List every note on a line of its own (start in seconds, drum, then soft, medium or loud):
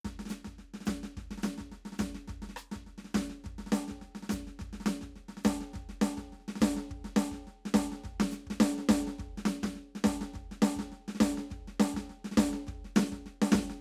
0.03 kick soft
0.03 snare medium
0.09 kick soft
0.19 snare soft
0.25 snare soft
0.25 hi-hat pedal medium
0.30 snare medium
0.44 kick soft
0.44 snare soft
0.58 snare soft
0.74 snare soft
0.80 snare soft
0.85 kick soft
0.85 snare medium
0.85 hi-hat pedal medium
1.03 snare soft
1.17 kick soft
1.17 snare soft
1.23 kick soft
1.31 snare soft
1.37 snare soft
1.42 snare medium
1.42 hi-hat pedal medium
1.58 kick soft
1.58 snare soft
1.72 snare soft
1.85 snare soft
1.92 snare soft
1.98 kick soft
1.98 snare medium
1.98 hi-hat pedal medium
2.14 snare soft
2.28 kick soft
2.28 snare soft
2.36 kick soft
2.42 snare soft
2.49 snare soft
2.56 cross-stick medium
2.56 hi-hat pedal medium
2.71 snare medium
2.75 kick soft
2.86 snare soft
2.98 snare soft
3.04 snare soft
3.10 snare soft
3.14 kick soft
3.14 hi-hat pedal medium
3.29 snare soft
3.44 kick soft
3.44 snare soft
3.51 kick soft
3.58 snare soft
3.66 snare soft
3.72 snare medium
3.72 hi-hat pedal medium
3.88 kick soft
3.88 snare soft
4.01 snare soft
4.15 snare soft
4.22 snare soft
4.29 kick soft
4.29 snare medium
4.29 hi-hat pedal medium
4.41 kick soft
4.47 snare soft
4.59 kick soft
4.59 snare soft
4.68 kick soft
4.73 snare soft
4.80 snare soft
4.86 snare loud
4.86 hi-hat pedal medium
5.01 kick soft
5.01 snare soft
5.16 snare soft
5.28 snare soft
5.37 snare soft
5.44 kick soft
5.44 snare loud
5.44 hi-hat pedal medium
5.60 snare soft
5.73 kick soft
5.73 snare soft
5.82 kick soft
5.89 snare soft
6.01 snare medium
6.01 hi-hat pedal medium
6.17 kick soft
6.17 snare soft
6.32 snare soft
6.40 snare soft
6.48 snare medium
6.55 snare soft
6.61 kick soft
6.61 snare loud
6.61 hi-hat pedal medium
6.76 snare soft
6.89 kick soft
6.89 snare soft
6.97 kick soft
7.04 snare soft
7.16 snare loud
7.16 hi-hat pedal medium
7.31 kick soft
7.31 snare soft
7.47 snare soft
7.65 snare medium
7.74 kick soft
7.74 snare loud
7.74 hi-hat pedal medium
7.92 snare soft
8.03 kick soft
8.03 snare soft
8.11 kick soft
8.13 kick soft
8.20 snare loud
8.31 snare soft
8.31 hi-hat pedal medium
8.47 kick soft
8.47 snare medium
8.60 snare loud
8.78 snare soft
8.89 kick soft
8.89 snare loud
8.89 hi-hat pedal medium
9.07 snare soft
9.18 kick soft
9.18 snare soft
9.26 kick soft
9.37 snare soft
9.45 snare loud
9.45 hi-hat pedal medium
9.62 kick soft
9.62 snare medium
9.75 snare soft
9.95 snare soft
10.04 kick soft
10.04 snare loud
10.04 hi-hat pedal medium
10.12 kick soft
10.21 snare medium
10.33 kick soft
10.33 snare soft
10.51 snare soft
10.62 snare loud
10.62 hi-hat pedal medium
10.76 kick soft
10.76 snare medium
10.92 snare soft
11.08 snare medium
11.15 snare soft
11.20 kick soft
11.20 snare loud
11.20 hi-hat pedal medium
11.26 kick soft
11.37 snare soft
11.50 kick soft
11.50 snare soft
11.60 kick soft
11.67 snare soft
11.80 snare loud
11.80 hi-hat pedal medium
11.94 kick soft
11.94 snare medium
11.99 kick soft
12.09 snare soft
12.24 snare medium
12.31 snare soft
12.37 kick soft
12.37 snare loud
12.37 hi-hat pedal medium
12.53 snare soft
12.67 kick soft
12.67 snare soft
12.75 kick soft
12.84 snare soft
12.95 snare loud
12.95 hi-hat pedal medium
13.12 kick soft
13.12 snare soft
13.26 snare soft
13.42 snare medium
13.52 kick soft
13.52 snare loud
13.52 hi-hat pedal medium
13.62 kick soft
13.70 snare soft